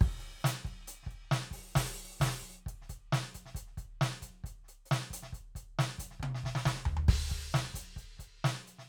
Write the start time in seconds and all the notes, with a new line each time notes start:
0.01 kick, crash
0.19 open hi-hat
0.40 hi-hat pedal
0.44 closed hi-hat, snare
0.65 kick, closed hi-hat
0.88 closed hi-hat
1.03 kick, snare
1.11 closed hi-hat
1.31 snare
1.51 open hi-hat, kick
1.76 open hi-hat, kick, snare
2.20 open hi-hat, kick, snare
2.27 snare
2.41 open hi-hat, kick
2.53 hi-hat pedal
2.66 kick, closed hi-hat
2.82 snare
2.90 closed hi-hat, kick
3.13 snare
3.35 closed hi-hat, kick
3.46 snare
3.55 closed hi-hat, kick
3.67 snare
3.78 closed hi-hat, kick
4.01 snare
4.22 closed hi-hat, kick
4.44 closed hi-hat, kick
4.64 snare
4.68 closed hi-hat
4.86 hi-hat pedal
4.91 snare
5.11 closed hi-hat, kick
5.23 snare
5.33 closed hi-hat, kick
5.55 closed hi-hat, kick
5.79 snare
5.99 closed hi-hat, kick
6.11 snare
6.20 kick, high tom
6.35 snare
6.44 kick, snare
6.55 snare
6.66 kick, snare
6.76 high tom
6.86 kick, floor tom
6.97 floor tom
7.08 kick, crash
7.28 open hi-hat, kick
7.51 snare, hi-hat pedal
7.74 closed hi-hat, kick
7.96 closed hi-hat, kick
8.17 closed hi-hat, kick, snare
8.44 snare
8.67 closed hi-hat
8.79 snare